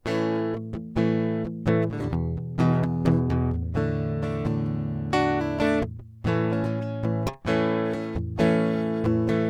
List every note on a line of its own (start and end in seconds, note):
0.07 0.55 A2
0.07 0.56 E3
0.07 0.56 A3
0.07 0.40 C#4
0.56 0.73 A2
0.56 0.74 A3
0.75 0.98 A2
0.75 0.85 E3
0.75 0.99 A3
0.98 1.46 A2
0.98 1.46 E3
0.98 1.41 A3
1.41 1.70 A3
1.47 1.60 A2
1.47 1.69 E3
1.68 1.90 A2
1.68 2.16 E3
1.68 1.84 A3
1.84 1.91 A3
1.93 2.04 A2
1.93 2.18 G3
2.04 2.14 E2
2.04 2.16 A#2
2.15 2.39 E2
2.15 2.39 B2
2.39 2.60 E2
2.39 2.60 B2
2.60 2.85 E2
2.60 2.85 B2
2.60 2.87 E3
2.85 3.06 E2
2.85 3.07 B2
3.07 3.31 E2
3.07 3.32 B2
3.32 3.56 E2
3.32 3.53 B2
3.53 4.46 E2
3.53 3.74 A2
3.76 4.25 A2
3.76 4.25 D3
3.76 4.25 A3
3.76 4.23 D4
4.24 4.45 A2
4.24 4.47 D3
4.24 4.47 A3
4.24 4.45 D4
4.46 6.12 E2
4.46 5.83 A2
4.46 5.63 D3
4.46 5.15 A3
4.46 5.13 D4
5.14 5.63 A3
5.14 5.60 D4
5.14 5.31 F#4
5.32 5.80 E4
5.60 5.86 D3
5.60 5.89 A3
5.60 5.87 D4
5.84 6.00 A2
6.01 6.25 A2
6.26 6.46 A2
6.26 6.66 E3
6.26 6.54 A3
6.30 6.50 C#4
6.48 6.66 A2
6.52 6.67 A3
6.52 7.32 C#4
6.66 7.03 A2
6.66 7.05 E3
6.66 6.79 A3
6.79 7.04 A3
7.05 7.28 A2
7.05 7.35 E3
7.05 7.34 A3
7.28 7.40 C#3
7.48 7.99 A2
7.48 7.96 E3
7.48 7.95 A3
7.48 8.19 C#4
7.95 8.18 E3
7.95 8.11 A3
8.11 8.21 A3
8.17 8.41 A2
8.17 8.41 E3
8.41 9.06 A2
8.41 9.06 E3
8.41 9.07 A3
8.41 9.09 C#4
9.06 9.24 A2
9.06 9.30 E3
9.06 9.30 A3
9.10 9.27 C#4
9.29 9.50 A2
9.29 9.50 E3
9.29 9.50 A3
9.29 9.50 C#4